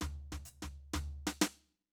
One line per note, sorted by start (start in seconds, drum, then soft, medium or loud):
0.01 snare soft
0.01 floor tom medium
0.32 snare soft
0.32 floor tom medium
0.45 hi-hat pedal soft
0.62 snare soft
0.62 floor tom soft
0.94 snare medium
0.94 floor tom medium
1.27 snare medium
1.41 snare loud